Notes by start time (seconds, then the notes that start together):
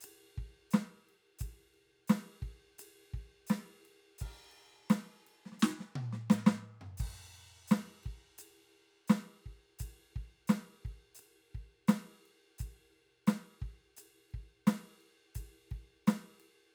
0.01 hi-hat pedal, ride
0.36 kick, ride
0.71 snare, hi-hat pedal, ride
1.09 ride
1.39 kick, hi-hat pedal, ride
1.74 ride
2.08 snare, hi-hat pedal, ride
2.42 kick, ride
2.79 hi-hat pedal, ride
3.14 kick, ride
3.47 snare, hi-hat pedal, ride
3.86 ride
4.19 kick, hi-hat pedal, crash
4.52 ride
4.90 snare, hi-hat pedal, ride
5.27 ride
5.46 snare
5.52 snare
5.58 snare, hi-hat pedal
5.63 snare
5.80 snare
5.96 mid tom
6.13 snare
6.30 snare, hi-hat pedal
6.47 snare
6.81 floor tom
6.98 kick, hi-hat pedal, crash
7.68 snare, hi-hat pedal
7.72 ride
8.04 kick, ride
8.38 hi-hat pedal, ride
9.08 snare, hi-hat pedal, ride
9.46 kick
9.79 kick, hi-hat pedal, ride
10.16 kick, ride
10.48 snare, hi-hat pedal, ride
10.85 kick, ride
11.15 hi-hat pedal
11.20 ride
11.55 kick, ride
11.88 snare, hi-hat pedal, ride
12.26 ride
12.59 kick, hi-hat pedal, ride
13.27 snare, hi-hat pedal, ride
13.62 kick
13.97 hi-hat pedal, ride
14.31 kick, ride
14.67 snare, hi-hat pedal, ride
15.01 ride
15.35 kick, hi-hat pedal, ride
15.71 kick, ride
16.07 snare, hi-hat pedal, ride
16.40 ride